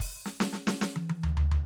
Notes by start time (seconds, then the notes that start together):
0.00 open hi-hat, kick
0.26 snare
0.40 snare
0.53 snare
0.67 snare
0.81 snare
0.96 high tom
1.09 high tom
1.23 floor tom
1.37 floor tom
1.51 floor tom